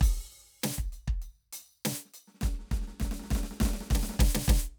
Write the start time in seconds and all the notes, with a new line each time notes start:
0.01 kick, percussion
0.62 closed hi-hat, snare, hi-hat pedal
0.78 kick
0.92 closed hi-hat
1.08 kick, crash
1.22 closed hi-hat
1.53 closed hi-hat
1.85 closed hi-hat, snare
2.05 snare
2.14 closed hi-hat
2.28 snare
2.34 snare
2.38 snare, hi-hat pedal
2.41 kick, snare
2.46 snare
2.53 snare
2.59 snare
2.63 snare
2.67 snare
2.71 kick, snare
2.76 snare
2.80 snare
2.88 snare
2.92 snare
2.97 snare
3.00 kick, snare
3.04 snare
3.08 snare
3.11 snare
3.20 snare
3.24 snare
3.28 snare
3.31 kick, snare
3.35 snare
3.39 snare
3.43 snare
3.51 snare
3.56 snare
3.60 kick, snare
3.65 snare
3.69 snare
3.73 snare
3.81 snare
3.86 snare
3.90 kick, snare
3.95 snare
4.03 snare
4.09 snare
4.14 snare
4.20 kick, snare
4.35 snare
4.48 kick, snare